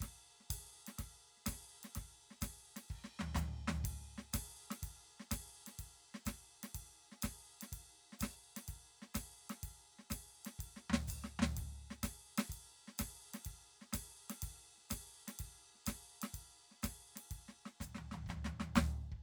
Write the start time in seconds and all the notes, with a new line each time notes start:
0.01 kick, snare, hi-hat pedal, ride
0.41 snare
0.51 kick, hi-hat pedal, ride
0.87 snare, ride
0.99 kick, snare, ride
1.37 snare
1.47 kick, snare, hi-hat pedal, ride
1.51 snare
1.84 snare, ride
1.96 kick, snare, ride
2.31 snare
2.42 kick, snare, hi-hat pedal, ride
2.77 snare, ride
2.89 kick, hi-hat pedal, ride
3.05 snare
3.20 snare, floor tom
3.35 kick, snare, floor tom, hi-hat pedal
3.68 snare, floor tom
3.85 kick, ride
4.18 snare
4.34 kick, snare, hi-hat pedal, ride
4.71 snare, ride
4.83 kick, ride
5.20 snare
5.32 kick, snare, hi-hat pedal, ride
5.67 snare, ride
5.79 kick, ride
6.15 snare
6.26 kick, snare, hi-hat pedal, ride
6.64 snare, ride
6.75 kick, ride
7.12 snare
7.23 kick, snare, hi-hat pedal, ride
7.62 snare, ride
7.73 kick, ride
8.13 snare
8.20 kick, snare, hi-hat pedal, ride
8.57 snare, ride
8.68 kick, hi-hat pedal, ride
9.03 snare
9.15 kick, snare, hi-hat pedal, ride
9.50 snare, ride
9.63 kick, ride
9.99 snare
10.11 kick, snare, hi-hat pedal, ride
10.46 snare, ride
10.60 kick, ride
10.77 snare
10.90 snare, floor tom
11.08 kick, hi-hat pedal, ride
11.24 snare
11.40 snare, floor tom
11.55 kick, hi-hat pedal, ride
11.91 snare
12.04 kick, snare, hi-hat pedal, ride
12.38 snare, ride
12.49 kick, hi-hat pedal, ride
12.88 snare
12.99 kick, snare, hi-hat pedal, ride
13.34 snare, ride
13.44 kick, hi-hat pedal, ride
13.82 snare
13.93 kick, snare, hi-hat pedal, ride
14.30 snare, ride
14.43 kick, ride
14.78 snare
14.90 kick, snare, hi-hat pedal, ride
15.28 snare, ride
15.40 kick, ride
15.75 snare
15.87 kick, snare, hi-hat pedal, ride
16.22 snare, ride
16.34 kick, hi-hat pedal, ride
16.72 snare
16.83 kick, snare, hi-hat pedal, ride
17.16 snare, ride
17.29 kick, hi-hat pedal, ride
17.49 snare
17.66 snare
17.81 kick, snare, floor tom, hi-hat pedal
17.95 snare, floor tom
18.12 snare, floor tom
18.27 kick, snare, floor tom, hi-hat pedal
18.45 snare, floor tom
18.60 snare, floor tom
18.76 kick, snare, floor tom, hi-hat pedal
19.12 kick